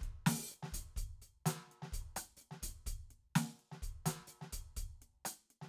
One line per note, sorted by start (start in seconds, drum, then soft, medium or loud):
0.01 kick soft
0.01 closed hi-hat soft
0.26 open hi-hat loud
0.26 snare medium
0.51 hi-hat pedal medium
0.63 snare medium
0.72 closed hi-hat medium
0.72 kick soft
0.96 closed hi-hat medium
0.96 kick soft
1.22 closed hi-hat soft
1.46 closed hi-hat loud
1.46 snare medium
1.71 closed hi-hat soft
1.82 snare soft
1.92 closed hi-hat medium
1.92 kick soft
2.16 closed hi-hat loud
2.16 cross-stick medium
2.37 hi-hat pedal soft
2.41 closed hi-hat soft
2.51 snare soft
2.62 closed hi-hat loud
2.62 kick soft
2.86 closed hi-hat medium
2.86 kick soft
3.11 closed hi-hat soft
3.35 closed hi-hat loud
3.35 snare medium
3.54 hi-hat pedal soft
3.59 closed hi-hat soft
3.72 snare soft
3.82 closed hi-hat medium
3.82 kick soft
4.06 closed hi-hat loud
4.06 snare medium
4.27 hi-hat pedal medium
4.32 closed hi-hat soft
4.41 snare soft
4.52 closed hi-hat medium
4.52 kick soft
4.76 closed hi-hat medium
4.76 kick soft
4.82 kick soft
5.02 closed hi-hat soft
5.25 closed hi-hat loud
5.25 cross-stick medium
5.50 closed hi-hat soft
5.62 snare soft